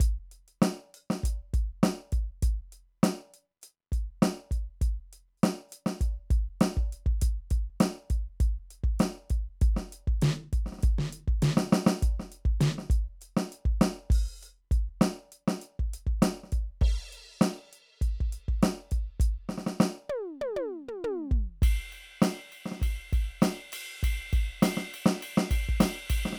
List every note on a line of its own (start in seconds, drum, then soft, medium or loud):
0.01 closed hi-hat loud
0.01 kick medium
0.31 closed hi-hat medium
0.48 closed hi-hat soft
0.62 closed hi-hat medium
0.62 snare loud
0.94 open hi-hat medium
0.94 hi-hat pedal soft
1.10 snare medium
1.23 closed hi-hat loud
1.23 kick medium
1.54 closed hi-hat medium
1.54 kick medium
1.83 open hi-hat loud
1.83 snare loud
1.83 hi-hat pedal soft
2.12 closed hi-hat medium
2.12 kick medium
2.42 closed hi-hat loud
2.42 kick medium
2.72 closed hi-hat medium
3.03 closed hi-hat loud
3.03 snare loud
3.34 closed hi-hat medium
3.61 closed hi-hat medium
3.61 hi-hat pedal soft
3.92 closed hi-hat medium
3.92 kick medium
4.22 closed hi-hat medium
4.22 snare loud
4.22 hi-hat pedal soft
4.51 closed hi-hat medium
4.51 kick medium
4.81 closed hi-hat medium
4.81 kick medium
5.13 closed hi-hat medium
5.37 hi-hat pedal soft
5.43 closed hi-hat medium
5.43 snare loud
5.69 closed hi-hat medium
5.69 hi-hat pedal soft
5.86 snare medium
6.01 closed hi-hat medium
6.01 kick medium
6.30 closed hi-hat medium
6.30 kick medium
6.61 closed hi-hat medium
6.61 snare loud
6.77 kick medium
6.92 closed hi-hat medium
7.06 kick medium
7.21 closed hi-hat loud
7.21 kick medium
7.50 closed hi-hat medium
7.50 kick medium
7.70 kick soft
7.80 closed hi-hat loud
7.80 snare loud
8.10 closed hi-hat medium
8.10 kick medium
8.40 closed hi-hat medium
8.40 kick medium
8.70 closed hi-hat medium
8.84 kick medium
8.99 closed hi-hat medium
8.99 snare loud
9.30 closed hi-hat medium
9.30 kick medium
9.61 closed hi-hat medium
9.61 kick medium
9.76 snare medium
9.92 closed hi-hat medium
10.07 kick medium
10.21 closed hi-hat medium
10.21 snare loud
10.53 closed hi-hat medium
10.53 kick medium
10.66 snare soft
10.72 snare soft
10.79 snare soft
10.83 closed hi-hat medium
10.83 kick medium
10.98 snare medium
11.12 closed hi-hat medium
11.28 kick medium
11.42 closed hi-hat loud
11.42 snare loud
11.57 snare loud
11.72 snare loud
11.86 snare loud
12.02 closed hi-hat medium
12.02 kick medium
12.20 snare soft
12.32 closed hi-hat medium
12.45 kick medium
12.61 closed hi-hat medium
12.61 snare loud
12.78 snare soft
12.90 open hi-hat medium
12.90 kick medium
13.21 closed hi-hat medium
13.21 hi-hat pedal medium
13.37 snare loud
13.52 closed hi-hat medium
13.65 kick medium
13.81 closed hi-hat medium
13.81 snare loud
14.10 open hi-hat loud
14.10 kick medium
14.42 open hi-hat medium
14.42 hi-hat pedal medium
14.71 closed hi-hat medium
14.71 kick medium
14.88 kick soft
15.01 closed hi-hat medium
15.01 snare loud
15.32 closed hi-hat medium
15.48 snare loud
15.61 closed hi-hat medium
15.79 kick medium
15.93 closed hi-hat medium
16.07 kick medium
16.22 closed hi-hat loud
16.22 snare loud
16.43 snare soft
16.52 closed hi-hat medium
16.52 kick medium
16.81 kick medium
16.81 crash medium
17.12 closed hi-hat medium
17.41 closed hi-hat medium
17.41 snare loud
17.73 closed hi-hat medium
18.01 closed hi-hat medium
18.01 kick medium
18.20 kick medium
18.32 closed hi-hat medium
18.48 kick medium
18.62 closed hi-hat medium
18.62 snare loud
18.91 closed hi-hat medium
18.91 kick medium
19.20 closed hi-hat loud
19.20 kick medium
19.49 snare medium
19.58 snare medium
19.66 snare medium
19.80 snare loud
20.09 high tom loud
20.41 high tom loud
20.56 high tom loud
20.88 mid tom medium
21.04 mid tom loud
21.31 kick medium
21.62 kick medium
21.62 ride loud
21.92 ride medium
22.20 snare loud
22.20 hi-hat pedal soft
22.20 ride medium
22.50 hi-hat pedal soft
22.50 ride medium
22.66 snare medium
22.71 snare soft
22.80 kick medium
22.80 snare soft
22.80 ride medium
23.12 kick medium
23.12 ride medium
23.42 snare loud
23.42 ride medium
23.72 open hi-hat medium
23.72 ride loud
24.02 kick medium
24.02 hi-hat pedal medium
24.02 ride loud
24.33 kick medium
24.33 ride medium
24.62 snare loud
24.62 ride loud
24.77 snare medium
24.94 ride medium
25.06 snare loud
25.19 hi-hat pedal soft
25.19 ride loud
25.37 snare loud
25.51 kick medium
25.51 ride loud
25.69 kick medium
25.80 snare loud
25.80 ride loud
26.10 kick medium
26.10 ride loud
26.25 snare medium
26.32 snare medium